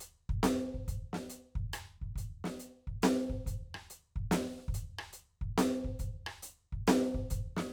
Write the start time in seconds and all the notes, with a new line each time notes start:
0.01 closed hi-hat
0.29 kick
0.43 closed hi-hat, snare
0.74 kick
0.88 closed hi-hat, kick
1.13 snare
1.30 closed hi-hat
1.56 kick
1.73 closed hi-hat, cross-stick
2.02 kick
2.16 closed hi-hat, kick
2.44 snare
2.60 closed hi-hat
2.87 kick
3.03 closed hi-hat, snare
3.30 kick
3.47 closed hi-hat, kick
3.75 cross-stick
3.90 closed hi-hat
4.16 kick
4.31 closed hi-hat, snare
4.58 snare
4.68 kick
4.74 closed hi-hat
4.99 cross-stick
5.13 closed hi-hat
5.41 kick
5.58 closed hi-hat, snare
5.85 kick
5.99 closed hi-hat, kick
6.27 cross-stick
6.43 closed hi-hat
6.73 kick
6.87 closed hi-hat, snare
7.15 kick
7.31 closed hi-hat, kick
7.57 snare